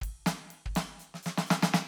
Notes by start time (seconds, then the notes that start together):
0.02 kick, ride
0.27 snare, ride
0.51 ride
0.66 kick
0.76 snare, ride
1.00 hi-hat pedal
1.15 snare
1.23 snare, hi-hat pedal
1.38 snare
1.46 hi-hat pedal
1.51 snare
1.63 snare
1.74 snare